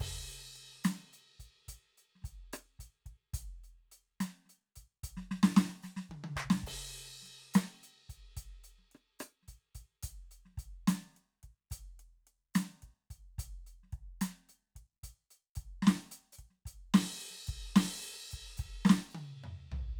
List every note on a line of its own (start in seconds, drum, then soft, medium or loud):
0.01 kick soft
0.01 crash loud
0.07 kick soft
0.30 closed hi-hat soft
0.56 closed hi-hat soft
0.85 closed hi-hat loud
0.85 snare medium
1.14 closed hi-hat soft
1.40 closed hi-hat soft
1.40 kick soft
1.69 closed hi-hat medium
1.69 kick soft
1.98 closed hi-hat soft
2.16 snare soft
2.22 closed hi-hat soft
2.22 kick soft
2.22 snare soft
2.54 closed hi-hat medium
2.54 cross-stick medium
2.80 closed hi-hat soft
2.80 kick soft
2.80 snare soft
3.06 kick soft
3.06 closed hi-hat soft
3.34 closed hi-hat medium
3.34 kick soft
3.40 kick soft
3.64 closed hi-hat soft
3.92 closed hi-hat soft
4.21 closed hi-hat medium
4.21 snare medium
4.46 closed hi-hat soft
4.46 snare soft
4.76 closed hi-hat medium
4.76 kick soft
5.04 closed hi-hat medium
5.04 kick soft
5.18 snare soft
5.32 snare medium
5.44 snare loud
5.57 snare loud
5.57 hi-hat pedal medium
5.70 snare soft
5.83 snare medium
5.83 hi-hat pedal soft
5.97 snare medium
6.10 kick soft
6.10 high tom medium
6.25 high tom loud
6.36 kick soft
6.36 percussion loud
6.51 snare loud
6.64 kick soft
6.64 crash loud
6.70 kick soft
6.98 open hi-hat soft
7.23 snare soft
7.23 closed hi-hat soft
7.55 closed hi-hat loud
7.55 snare loud
7.84 closed hi-hat soft
8.10 closed hi-hat soft
8.10 kick soft
8.37 closed hi-hat medium
8.37 kick soft
8.65 closed hi-hat soft
8.79 snare soft
8.92 cross-stick soft
8.92 closed hi-hat soft
9.20 open hi-hat medium
9.20 cross-stick medium
9.20 hi-hat pedal soft
9.43 snare soft
9.49 closed hi-hat soft
9.49 kick soft
9.76 closed hi-hat medium
9.76 kick soft
10.03 closed hi-hat medium
10.03 kick soft
10.32 closed hi-hat soft
10.46 snare soft
10.51 snare soft
10.54 kick soft
10.54 snare soft
10.60 closed hi-hat medium
10.88 closed hi-hat loud
10.88 snare loud
11.15 snare soft
11.15 closed hi-hat soft
11.44 kick soft
11.44 closed hi-hat soft
11.71 closed hi-hat medium
11.71 kick soft
11.71 hi-hat pedal soft
12.00 closed hi-hat soft
12.28 closed hi-hat soft
12.55 closed hi-hat loud
12.55 snare loud
12.55 hi-hat pedal soft
12.83 kick soft
12.83 closed hi-hat soft
13.11 closed hi-hat soft
13.11 kick soft
13.39 closed hi-hat medium
13.39 kick soft
13.45 kick soft
13.67 closed hi-hat soft
13.84 snare soft
13.90 kick soft
13.90 snare soft
13.90 closed hi-hat soft
14.22 closed hi-hat loud
14.22 snare medium
14.50 closed hi-hat soft
14.76 kick soft
14.76 closed hi-hat soft
15.04 closed hi-hat medium
15.04 kick soft
15.31 closed hi-hat soft
15.56 closed hi-hat medium
15.56 kick soft
15.83 snare medium
15.88 snare loud
15.94 snare soft
16.12 open hi-hat medium
16.33 hi-hat pedal medium
16.39 kick soft
16.39 closed hi-hat soft
16.51 snare soft
16.66 closed hi-hat medium
16.66 kick soft
16.95 snare loud
16.95 crash loud
17.04 snare soft
17.20 closed hi-hat soft
17.31 snare soft
17.48 kick soft
17.48 snare soft
17.48 closed hi-hat medium
17.55 kick soft
17.77 snare loud
17.77 crash loud
17.85 snare soft
18.03 closed hi-hat soft
18.15 snare soft
18.31 closed hi-hat medium
18.31 kick soft
18.58 closed hi-hat medium
18.58 kick soft
18.58 snare soft
18.66 kick soft
18.86 snare loud
18.90 snare loud
18.96 snare medium
19.11 hi-hat pedal soft
19.15 high tom loud
19.44 mid tom medium
19.72 floor tom medium